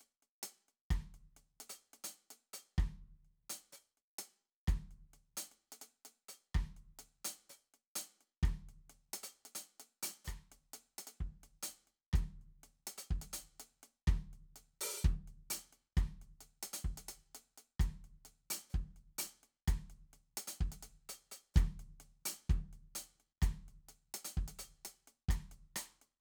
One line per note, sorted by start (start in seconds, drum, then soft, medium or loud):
0.01 closed hi-hat soft
0.23 closed hi-hat soft
0.43 closed hi-hat loud
0.69 closed hi-hat soft
0.91 kick medium
0.91 cross-stick medium
0.91 closed hi-hat medium
1.14 closed hi-hat soft
1.37 closed hi-hat soft
1.60 closed hi-hat medium
1.70 closed hi-hat medium
1.94 closed hi-hat soft
2.04 closed hi-hat medium
2.31 closed hi-hat medium
2.54 closed hi-hat medium
2.78 kick medium
2.78 cross-stick medium
2.78 closed hi-hat soft
3.25 closed hi-hat soft
3.50 closed hi-hat loud
3.73 hi-hat pedal medium
3.97 closed hi-hat soft
4.19 closed hi-hat loud
4.68 kick medium
4.68 cross-stick medium
4.68 closed hi-hat medium
4.91 closed hi-hat soft
5.14 closed hi-hat soft
5.37 closed hi-hat loud
5.52 closed hi-hat soft
5.72 closed hi-hat medium
5.82 closed hi-hat medium
6.05 closed hi-hat medium
6.29 closed hi-hat medium
6.55 kick medium
6.55 cross-stick medium
6.55 closed hi-hat soft
6.77 closed hi-hat soft
6.99 closed hi-hat medium
7.25 closed hi-hat loud
7.50 closed hi-hat soft
7.50 hi-hat pedal medium
7.74 closed hi-hat soft
7.96 closed hi-hat loud
8.21 closed hi-hat soft
8.43 kick medium
8.43 cross-stick medium
8.43 closed hi-hat soft
8.69 closed hi-hat soft
8.90 closed hi-hat soft
9.13 closed hi-hat loud
9.23 closed hi-hat medium
9.45 closed hi-hat medium
9.55 closed hi-hat medium
9.80 closed hi-hat medium
10.03 closed hi-hat loud
10.25 kick soft
10.25 cross-stick medium
10.25 hi-hat pedal medium
10.29 closed hi-hat medium
10.52 closed hi-hat soft
10.74 closed hi-hat medium
10.98 closed hi-hat medium
11.07 closed hi-hat medium
11.21 kick soft
11.44 closed hi-hat soft
11.63 closed hi-hat loud
11.87 closed hi-hat soft
12.13 kick medium
12.13 cross-stick medium
12.13 closed hi-hat medium
12.41 closed hi-hat soft
12.63 closed hi-hat soft
12.87 closed hi-hat loud
12.98 closed hi-hat medium
13.11 kick medium
13.22 closed hi-hat medium
13.33 closed hi-hat loud
13.60 closed hi-hat medium
13.83 closed hi-hat soft
14.07 kick medium
14.07 cross-stick medium
14.07 closed hi-hat soft
14.33 closed hi-hat soft
14.56 closed hi-hat medium
14.81 open hi-hat loud
15.02 kick medium
15.02 closed hi-hat soft
15.02 hi-hat pedal soft
15.28 closed hi-hat soft
15.50 closed hi-hat loud
15.73 closed hi-hat soft
15.97 kick medium
15.97 cross-stick medium
15.97 closed hi-hat soft
16.22 closed hi-hat soft
16.41 closed hi-hat medium
16.63 closed hi-hat loud
16.73 closed hi-hat loud
16.85 kick soft
16.98 closed hi-hat medium
17.09 closed hi-hat medium
17.35 closed hi-hat medium
17.58 closed hi-hat medium
17.80 kick medium
17.80 cross-stick medium
17.80 closed hi-hat medium
18.04 closed hi-hat soft
18.25 closed hi-hat medium
18.50 closed hi-hat loud
18.70 closed hi-hat soft
18.70 hi-hat pedal soft
18.74 kick medium
18.96 closed hi-hat soft
19.19 closed hi-hat loud
19.43 closed hi-hat soft
19.68 kick medium
19.68 cross-stick medium
19.68 closed hi-hat medium
19.90 closed hi-hat soft
20.13 closed hi-hat soft
20.37 closed hi-hat loud
20.48 closed hi-hat medium
20.61 kick medium
20.72 closed hi-hat medium
20.83 closed hi-hat medium
21.09 closed hi-hat medium
21.32 open hi-hat medium
21.54 kick loud
21.54 cross-stick medium
21.54 closed hi-hat medium
21.54 hi-hat pedal soft
21.79 closed hi-hat soft
22.00 closed hi-hat soft
22.26 closed hi-hat loud
22.50 kick medium
22.50 closed hi-hat soft
22.73 closed hi-hat soft
22.95 closed hi-hat loud
23.20 closed hi-hat soft
23.42 kick medium
23.42 cross-stick medium
23.42 closed hi-hat medium
23.68 closed hi-hat soft
23.89 closed hi-hat medium
24.14 closed hi-hat loud
24.25 closed hi-hat medium
24.37 kick medium
24.48 closed hi-hat medium
24.59 closed hi-hat medium
24.85 closed hi-hat medium
25.08 closed hi-hat soft
25.29 kick medium
25.29 cross-stick medium
25.29 closed hi-hat medium
25.52 closed hi-hat soft
25.76 closed hi-hat loud
25.76 cross-stick medium
26.02 closed hi-hat soft